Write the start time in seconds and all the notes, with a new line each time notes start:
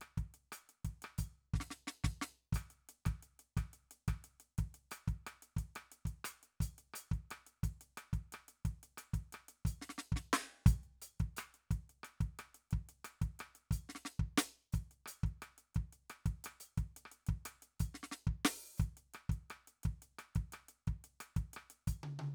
0.01 cross-stick, closed hi-hat
0.17 kick, closed hi-hat
0.34 closed hi-hat
0.52 closed hi-hat, cross-stick
0.69 closed hi-hat
0.85 kick, closed hi-hat
1.02 cross-stick, closed hi-hat
1.18 closed hi-hat, kick
1.54 kick, snare
1.60 snare
1.71 snare
1.87 snare
2.04 kick, snare
2.22 snare
2.53 closed hi-hat, kick, cross-stick
2.70 closed hi-hat
2.89 closed hi-hat
3.06 kick, cross-stick, closed hi-hat
3.23 closed hi-hat
3.39 closed hi-hat
3.57 kick, cross-stick, closed hi-hat
3.73 closed hi-hat
3.91 closed hi-hat
4.08 kick, cross-stick, closed hi-hat
4.24 closed hi-hat
4.40 closed hi-hat
4.58 kick, closed hi-hat
4.74 closed hi-hat
4.91 closed hi-hat, cross-stick
5.08 kick, closed hi-hat
5.27 cross-stick, closed hi-hat
5.42 closed hi-hat
5.57 kick, closed hi-hat
5.75 cross-stick, closed hi-hat
5.92 closed hi-hat
6.05 kick, closed hi-hat
6.24 closed hi-hat, cross-stick
6.43 closed hi-hat
6.60 closed hi-hat, kick
6.78 closed hi-hat
6.94 closed hi-hat, cross-stick
7.11 kick, closed hi-hat
7.31 cross-stick, closed hi-hat
7.47 closed hi-hat
7.63 kick, closed hi-hat
7.81 closed hi-hat
7.97 cross-stick, closed hi-hat
8.13 kick, closed hi-hat
8.32 cross-stick, closed hi-hat
8.48 closed hi-hat
8.65 kick, closed hi-hat
8.83 closed hi-hat
8.98 cross-stick, closed hi-hat
9.14 kick, closed hi-hat
9.33 cross-stick, closed hi-hat
9.49 closed hi-hat
9.65 closed hi-hat, kick
9.82 snare
9.89 snare
9.98 snare
10.12 kick
10.16 snare
10.33 snare
10.49 snare
10.66 closed hi-hat, kick
10.83 closed hi-hat
11.02 closed hi-hat
11.20 kick, closed hi-hat
11.37 closed hi-hat, cross-stick
11.54 closed hi-hat
11.71 kick, closed hi-hat
11.90 closed hi-hat
12.03 cross-stick, closed hi-hat
12.21 kick, closed hi-hat
12.39 cross-stick, closed hi-hat
12.55 closed hi-hat
12.71 kick, closed hi-hat
12.89 closed hi-hat
13.05 cross-stick, closed hi-hat
13.22 kick, closed hi-hat
13.39 cross-stick, closed hi-hat
13.55 closed hi-hat
13.71 closed hi-hat, kick
13.89 snare
13.95 snare
14.05 snare
14.19 kick
14.38 open hi-hat, snare
14.72 kick, closed hi-hat, hi-hat pedal
14.91 closed hi-hat
15.06 closed hi-hat, cross-stick
15.23 kick, closed hi-hat
15.42 cross-stick, closed hi-hat
15.58 closed hi-hat
15.75 kick, closed hi-hat
15.93 closed hi-hat
16.10 cross-stick, closed hi-hat
16.26 kick, closed hi-hat
16.44 cross-stick, closed hi-hat
16.60 closed hi-hat
16.78 kick, closed hi-hat
16.97 closed hi-hat
17.05 cross-stick
17.12 closed hi-hat
17.27 kick, closed hi-hat
17.45 cross-stick, closed hi-hat
17.62 closed hi-hat
17.80 closed hi-hat, kick
17.94 snare
18.03 snare
18.12 snare
18.27 kick
18.45 open hi-hat, snare
18.77 kick, hi-hat pedal
18.82 closed hi-hat
18.97 closed hi-hat
19.14 cross-stick, closed hi-hat
19.29 kick, closed hi-hat
19.50 cross-stick, closed hi-hat
19.67 closed hi-hat
19.83 kick, closed hi-hat
20.02 closed hi-hat
20.19 cross-stick, closed hi-hat
20.35 kick, closed hi-hat
20.52 cross-stick, closed hi-hat
20.69 closed hi-hat
20.87 kick, closed hi-hat
21.04 closed hi-hat
21.20 cross-stick, closed hi-hat
21.36 kick, closed hi-hat
21.53 cross-stick, closed hi-hat
21.70 closed hi-hat
21.87 closed hi-hat, kick
22.03 high tom
22.19 high tom
22.24 high tom